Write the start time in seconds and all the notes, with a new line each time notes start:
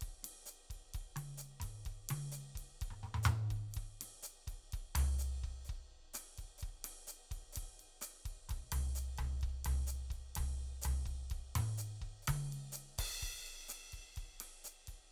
0.01 kick, cross-stick, ride
0.07 kick
0.23 snare, ride
0.46 hi-hat pedal, ride
0.70 kick, ride
0.75 kick
0.94 kick, ride
1.00 kick
1.16 high tom, ride
1.38 hi-hat pedal, ride
1.60 kick, mid tom, ride
1.68 kick
1.85 kick, ride
1.91 kick
2.09 high tom, ride
2.31 hi-hat pedal, ride
2.55 kick, ride
2.60 kick
2.81 kick, ride
2.88 kick, mid tom
3.03 mid tom
3.14 mid tom
3.23 hi-hat pedal, mid tom
3.50 kick, ride
3.56 kick
3.70 hi-hat pedal, ride
3.76 kick
3.82 kick
4.00 snare, ride
4.23 hi-hat pedal, ride
4.47 kick, ride
4.53 kick
4.72 kick, ride
4.79 kick
4.95 floor tom, ride
5.19 hi-hat pedal
5.34 snare
5.43 kick
5.49 kick
5.64 hi-hat pedal
5.69 kick
5.75 kick
6.14 cross-stick, snare, hi-hat pedal, ride
6.38 kick, ride
6.44 kick
6.58 hi-hat pedal, ride
6.62 kick
6.68 kick
6.84 cross-stick, ride
7.07 hi-hat pedal, ride
7.31 kick, ride
7.36 kick
7.52 snare, hi-hat pedal, ride
7.57 kick
7.62 kick
7.79 ride
8.01 cross-stick, hi-hat pedal, ride
8.25 kick, ride
8.31 kick
8.49 kick, floor tom, ride
8.56 kick
8.72 floor tom, ride
8.95 hi-hat pedal, ride
9.18 kick, floor tom, ride
9.24 kick
9.41 kick, ride
9.49 kick
9.65 floor tom, ride
9.87 hi-hat pedal, ride
10.10 kick, ride
10.15 kick
10.35 kick, floor tom, ride
10.44 kick
10.81 floor tom, hi-hat pedal, ride
11.05 kick, ride
11.11 kick
11.30 kick, ride
11.37 kick
11.55 mid tom, ride
11.78 hi-hat pedal
12.01 kick, mid tom, ride
12.07 kick
12.22 hi-hat pedal
12.27 kick, high tom, ride
12.35 kick
12.52 ride
12.72 hi-hat pedal, ride
12.98 kick, ride, crash
13.22 kick, ride
13.46 ride
13.68 cross-stick, hi-hat pedal, ride
13.92 kick, ride
13.98 kick
14.13 hi-hat pedal, ride
14.17 kick
14.22 kick
14.40 cross-stick, ride
14.64 hi-hat pedal, ride
14.87 kick, ride
14.93 kick